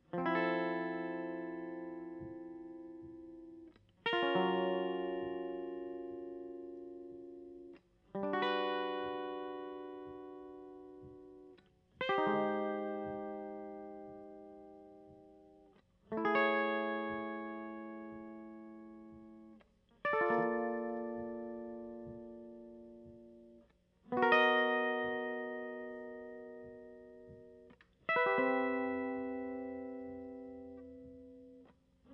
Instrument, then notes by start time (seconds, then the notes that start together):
electric guitar
0.15 F3
0.19 C4
0.26 E4
0.36 A4
4.07 A#4
4.14 F4
4.23 C#4
4.36 F#3
8.16 G3
8.24 D4
8.34 F#4
8.43 B4
12.02 C5
12.10 G4
12.19 D#4
12.28 G#3
12.36 D3
16.13 A3
16.18 E4
16.26 G#4
16.36 C#5
20.06 D5
20.14 A4
20.22 F4
20.31 A#3
20.39 E3
24.13 B3
24.18 F#4
24.23 A#4
24.33 D#5
27.72 B3
28.09 E5
28.17 B4
28.27 G4
28.39 C4